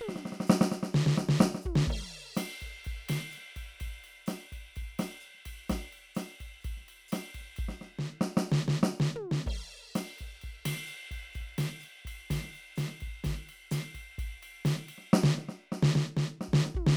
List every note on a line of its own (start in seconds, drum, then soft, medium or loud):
0.01 mid tom medium
0.09 snare soft
0.16 snare soft
0.16 hi-hat pedal soft
0.26 snare soft
0.33 snare soft
0.41 snare medium
0.48 snare loud
0.48 hi-hat pedal medium
0.62 snare loud
0.72 snare medium
0.72 hi-hat pedal medium
0.83 snare medium
0.95 snare loud
0.95 hi-hat pedal soft
1.07 snare loud
1.16 snare medium
1.16 hi-hat pedal medium
1.29 snare loud
1.39 kick soft
1.39 snare loud
1.39 hi-hat pedal medium
1.55 snare medium
1.62 kick soft
1.62 floor tom medium
1.62 hi-hat pedal medium
1.72 kick soft
1.76 snare loud
1.87 kick soft
1.87 hi-hat pedal soft
1.87 crash medium
1.94 kick soft
2.01 snare soft
2.36 snare medium
2.36 hi-hat pedal medium
2.36 ride loud
2.61 kick soft
2.61 ride soft
2.68 snare soft
2.71 snare soft
2.84 kick soft
2.84 hi-hat pedal soft
2.84 ride soft
3.09 snare medium
3.09 ride loud
3.32 hi-hat pedal medium
3.32 ride soft
3.38 snare soft
3.57 kick soft
3.57 ride soft
3.80 kick soft
3.80 hi-hat pedal soft
3.80 ride medium
3.87 kick soft
4.04 ride soft
4.27 snare medium
4.27 hi-hat pedal medium
4.27 ride medium
4.53 kick soft
4.53 ride soft
4.57 snare soft
4.75 kick soft
4.75 hi-hat pedal soft
4.75 ride soft
4.82 kick soft
4.99 snare medium
4.99 ride medium
5.21 hi-hat pedal medium
5.35 snare soft
5.46 kick soft
5.46 ride medium
5.69 kick soft
5.69 snare medium
5.69 hi-hat pedal soft
5.69 ride medium
5.93 ride soft
6.15 snare medium
6.15 hi-hat pedal medium
6.15 ride medium
6.41 kick soft
6.41 ride soft
6.62 kick soft
6.62 hi-hat pedal soft
6.62 ride medium
6.71 kick soft
6.78 snare soft
6.81 snare soft
6.89 ride soft
7.09 hi-hat pedal medium
7.09 ride medium
7.13 snare medium
7.35 kick soft
7.35 ride soft
7.41 snare soft
7.56 kick soft
7.56 hi-hat pedal soft
7.56 ride medium
7.65 kick soft
7.69 snare soft
7.82 snare soft
7.99 snare medium
8.22 snare medium
8.38 snare loud
8.52 snare loud
8.69 snare loud
8.83 snare loud
9.00 snare loud
9.16 mid tom medium
9.32 snare medium
9.47 kick soft
9.47 crash medium
9.96 snare medium
9.96 hi-hat pedal loud
9.96 ride medium
10.19 kick soft
10.19 snare soft
10.19 ride soft
10.41 kick soft
10.41 hi-hat pedal soft
10.41 ride soft
10.49 kick soft
10.66 snare medium
10.66 ride bell loud
10.86 hi-hat pedal medium
10.86 ride soft
11.12 kick soft
11.12 ride soft
11.16 kick soft
11.33 kick soft
11.33 hi-hat pedal soft
11.33 ride soft
11.41 kick soft
11.58 snare medium
11.58 ride bell medium
11.80 hi-hat pedal medium
11.80 ride soft
12.06 kick soft
12.06 ride medium
12.29 kick soft
12.29 snare medium
12.29 hi-hat pedal soft
12.29 ride medium
12.36 kick soft
12.45 snare soft
12.55 ride soft
12.76 snare medium
12.76 hi-hat pedal medium
12.76 ride medium
12.88 snare soft
13.01 kick soft
13.01 ride soft
13.08 kick soft
13.23 kick soft
13.23 snare medium
13.23 hi-hat pedal soft
13.23 ride medium
13.32 kick soft
13.49 ride soft
13.71 snare medium
13.71 hi-hat pedal loud
13.71 ride medium
13.95 kick soft
13.95 ride soft
14.19 kick soft
14.19 ride medium
14.25 kick soft
14.43 ride medium
14.66 snare loud
14.66 ride medium
14.76 snare soft
14.89 ride medium
14.99 snare soft
15.14 snare loud
15.24 snare loud
15.38 snare soft
15.49 snare soft
15.73 snare medium
15.83 snare loud
15.96 snare loud
16.17 snare medium
16.41 snare medium
16.49 kick soft
16.54 snare loud
16.65 snare soft
16.75 kick soft
16.75 floor tom medium
16.82 kick soft
16.87 snare loud